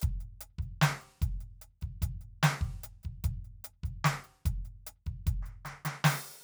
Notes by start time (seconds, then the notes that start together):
0.01 kick, closed hi-hat, hi-hat pedal
0.20 closed hi-hat
0.41 closed hi-hat
0.59 kick, closed hi-hat
0.82 closed hi-hat, snare
1.01 closed hi-hat
1.22 kick, closed hi-hat
1.41 closed hi-hat
1.62 closed hi-hat
1.81 kick, closed hi-hat
2.02 closed hi-hat, kick
2.21 closed hi-hat
2.43 closed hi-hat, snare
2.61 kick, closed hi-hat
2.83 closed hi-hat
3.03 kick, closed hi-hat
3.24 closed hi-hat, kick
3.45 closed hi-hat
3.64 closed hi-hat
3.83 kick, closed hi-hat
4.04 closed hi-hat, snare
4.24 closed hi-hat
4.46 closed hi-hat, kick
4.65 closed hi-hat
4.87 closed hi-hat
5.06 kick, closed hi-hat
5.27 closed hi-hat, kick
5.43 snare, closed hi-hat
5.65 snare, closed hi-hat
5.85 snare, closed hi-hat
6.04 open hi-hat, snare